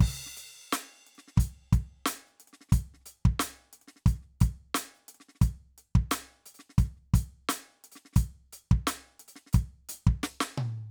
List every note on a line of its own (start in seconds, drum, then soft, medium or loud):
0.01 kick loud
0.01 crash loud
0.27 snare soft
0.37 closed hi-hat medium
0.73 open hi-hat loud
0.73 snare loud
0.73 hi-hat pedal soft
1.07 closed hi-hat soft
1.16 snare soft
1.16 closed hi-hat soft
1.28 snare soft
1.37 closed hi-hat medium
1.37 kick loud
1.37 snare soft
1.43 snare soft
1.49 snare soft
1.53 snare soft
1.73 kick loud
1.73 closed hi-hat medium
2.06 closed hi-hat loud
2.06 snare loud
2.27 hi-hat pedal soft
2.40 closed hi-hat medium
2.48 closed hi-hat soft
2.53 snare soft
2.61 snare soft
2.69 closed hi-hat medium
2.69 kick loud
2.69 snare soft
2.76 snare soft
2.94 snare soft
3.01 snare soft
3.06 closed hi-hat medium
3.26 kick loud
3.40 open hi-hat loud
3.40 snare loud
3.55 hi-hat pedal soft
3.73 closed hi-hat medium
3.82 closed hi-hat soft
3.88 snare soft
3.96 snare soft
4.06 closed hi-hat medium
4.06 kick loud
4.15 snare soft
4.22 snare soft
4.41 closed hi-hat medium
4.41 kick loud
4.75 closed hi-hat loud
4.75 snare loud
4.95 hi-hat pedal soft
5.09 closed hi-hat medium
5.15 closed hi-hat soft
5.21 snare soft
5.29 snare soft
5.35 snare soft
5.41 closed hi-hat medium
5.41 kick loud
5.41 snare soft
5.46 snare soft
5.78 closed hi-hat medium
5.96 kick loud
6.11 closed hi-hat loud
6.11 snare loud
6.46 closed hi-hat medium
6.55 closed hi-hat soft
6.60 snare soft
6.70 snare soft
6.78 closed hi-hat medium
6.78 kick loud
6.78 snare soft
6.85 snare soft
6.97 snare soft
7.14 closed hi-hat loud
7.14 kick loud
7.49 closed hi-hat loud
7.49 snare loud
7.84 closed hi-hat medium
7.92 closed hi-hat soft
7.92 snare soft
8.06 snare soft
8.13 closed hi-hat loud
8.13 kick loud
8.13 snare soft
8.21 snare soft
8.53 closed hi-hat medium
8.72 kick loud
8.87 closed hi-hat loud
8.87 snare loud
9.20 closed hi-hat medium
9.28 closed hi-hat soft
9.36 snare soft
9.47 snare soft
9.53 closed hi-hat medium
9.53 kick loud
9.58 snare soft
9.89 closed hi-hat loud
10.07 kick loud
10.24 snare loud
10.41 snare loud
10.58 mid tom loud